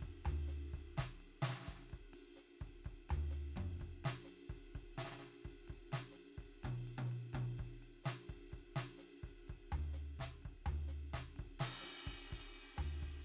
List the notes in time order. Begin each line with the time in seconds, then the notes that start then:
0.01 kick, ride
0.08 kick
0.26 floor tom, ride
0.48 hi-hat pedal, ride
0.74 kick, ride
0.79 kick
0.98 kick, snare, ride
1.05 kick
1.21 ride
1.43 snare, hi-hat pedal, ride
1.50 snare
1.56 snare
1.61 snare
1.65 kick, snare
1.71 kick, snare
1.75 snare
1.79 snare
1.83 snare
1.86 snare
1.88 snare, ride
1.91 snare
1.94 kick, snare
1.99 kick
2.14 ride
2.37 hi-hat pedal, ride
2.62 kick, ride, floor tom
2.68 kick
2.85 kick, ride
3.10 floor tom, ride
3.31 hi-hat pedal, ride
3.57 kick, mid tom, ride
3.62 kick
3.81 kick, ride
3.87 kick
4.05 snare, ride
4.25 hi-hat pedal, ride
4.50 kick, ride
4.56 kick
4.76 kick, ride
4.98 snare, ride
5.05 snare
5.12 snare
5.20 snare, hi-hat pedal, ride
5.27 snare
5.33 snare
5.37 snare
5.42 kick, snare, ride
5.46 snare
5.51 kick, snare
5.69 kick, ride
5.76 kick
5.93 snare, ride
6.12 hi-hat pedal
6.17 ride
6.38 kick, ride
6.64 kick, high tom, ride
6.71 kick
6.88 ride
6.99 high tom
7.07 hi-hat pedal
7.12 ride
7.34 kick, high tom, ride
7.40 kick
7.59 kick, ride
7.66 kick
7.83 ride
8.04 snare, hi-hat pedal, ride
8.30 kick, snare, ride
8.35 kick
8.53 kick, ride
8.59 kick
8.77 snare, ride
8.99 hi-hat pedal, ride
9.24 kick, ride
9.29 kick
9.49 kick, ride
9.56 kick
9.73 floor tom, ride
9.94 hi-hat pedal, ride
10.20 kick, snare, ride
10.43 kick, ride
10.67 floor tom, ride
10.88 hi-hat pedal, ride
11.14 kick, snare, ride
11.19 kick
11.37 kick, ride
11.45 kick
11.60 snare, crash
11.82 hi-hat pedal, ride
12.07 kick, ride
12.13 kick
12.31 kick, ride
12.39 kick
12.55 ride
12.77 floor tom, hi-hat pedal, ride
13.02 kick, ride
13.08 kick